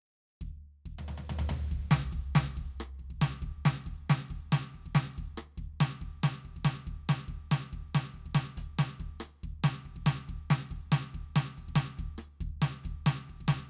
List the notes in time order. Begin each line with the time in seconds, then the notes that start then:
0.41 kick
0.86 kick
0.98 floor tom
1.08 floor tom
1.18 floor tom
1.29 floor tom
1.39 floor tom
1.49 floor tom
1.71 kick
1.91 snare
2.12 kick, snare
2.35 snare
2.57 kick, snare
2.80 cross-stick
2.99 kick
3.10 kick
3.21 snare
3.42 kick
3.65 snare
3.86 kick, snare
4.10 snare
4.30 kick
4.52 snare
4.74 kick
4.86 kick
4.95 snare
5.18 kick
5.37 cross-stick
5.57 kick
5.80 snare
6.01 kick
6.23 snare
6.41 kick, snare
6.56 kick
6.65 snare
6.87 kick
7.09 snare
7.28 kick
7.51 snare
7.73 kick
7.95 snare
8.14 kick
8.26 kick
8.35 snare
8.57 kick, percussion
8.79 snare, percussion
9.00 kick, percussion
9.20 cross-stick, percussion
9.43 kick, percussion
9.64 snare, percussion
9.85 kick, percussion
9.96 kick
10.06 snare, percussion
10.28 kick, percussion
10.50 snare, percussion
10.71 kick, percussion
10.92 snare, percussion
11.13 kick, snare, percussion
11.36 snare, percussion
11.57 kick, percussion
11.68 kick
11.76 snare, percussion
11.97 kick, percussion
12.18 cross-stick, percussion
12.41 kick, percussion
12.62 snare, percussion
12.74 snare
12.84 kick, percussion
13.06 snare, percussion
13.29 kick, percussion
13.40 kick
13.48 snare, percussion